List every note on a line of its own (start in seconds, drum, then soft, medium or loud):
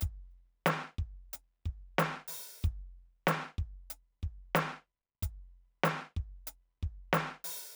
0.01 closed hi-hat loud
0.01 kick medium
0.31 closed hi-hat soft
0.66 closed hi-hat loud
0.66 snare loud
0.98 kick medium
0.98 closed hi-hat soft
1.33 closed hi-hat loud
1.65 kick soft
1.65 closed hi-hat soft
1.98 closed hi-hat loud
1.98 snare loud
2.28 open hi-hat loud
2.28 snare soft
2.62 closed hi-hat medium
2.62 kick medium
2.62 hi-hat pedal medium
3.27 closed hi-hat loud
3.27 snare loud
3.58 kick medium
3.58 closed hi-hat soft
3.90 closed hi-hat loud
4.22 kick soft
4.22 closed hi-hat soft
4.55 closed hi-hat loud
4.55 snare loud
5.22 closed hi-hat loud
5.22 kick medium
5.84 closed hi-hat loud
5.84 snare loud
6.17 kick medium
6.47 closed hi-hat loud
6.83 kick soft
7.13 closed hi-hat loud
7.13 snare loud
7.44 open hi-hat loud
7.44 snare soft